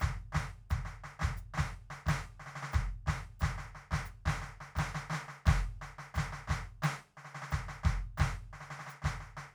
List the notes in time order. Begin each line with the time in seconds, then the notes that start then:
0.01 kick, snare, hi-hat pedal
0.34 snare
0.36 kick, snare
0.71 kick, snare, hi-hat pedal
0.87 snare
1.05 snare
1.21 snare
1.23 kick, snare
1.38 hi-hat pedal
1.55 snare
1.59 kick, snare
1.92 snare
2.08 kick, snare, hi-hat pedal
2.10 snare
2.41 snare
2.48 snare
2.57 snare
2.64 snare
2.74 kick, snare, hi-hat pedal
3.08 kick, snare
3.09 snare
3.41 kick, snare, hi-hat pedal
3.45 snare
3.60 snare
3.76 snare
3.92 kick, snare
3.94 snare
4.07 hi-hat pedal
4.27 kick, snare
4.29 snare
4.43 snare
4.62 snare
4.77 kick, snare, hi-hat pedal
4.80 snare
4.96 snare
5.11 snare
5.14 snare
5.30 snare
5.47 kick, snare, hi-hat pedal
5.49 snare
5.83 snare
6.00 snare
6.16 kick, snare, hi-hat pedal
6.19 snare
6.34 snare
6.49 kick, snare
6.52 snare
6.84 snare, hi-hat pedal
7.19 snare
7.26 snare
7.36 snare
7.43 snare
7.52 kick, hi-hat pedal
7.70 snare
7.85 kick, snare
7.87 snare
8.19 kick, snare, hi-hat pedal
8.22 snare
8.55 snare
8.62 snare
8.72 snare
8.81 snare
8.88 snare, hi-hat pedal
9.03 kick, snare
9.06 snare
9.22 snare
9.38 snare